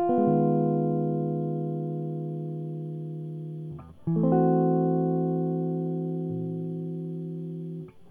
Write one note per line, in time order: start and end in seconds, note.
0.00 3.81 F4
0.10 3.44 B3
0.19 3.54 G#3
0.29 3.83 D#3
4.08 7.87 E3
4.17 6.78 A3
4.24 7.84 C4
4.32 7.90 F#4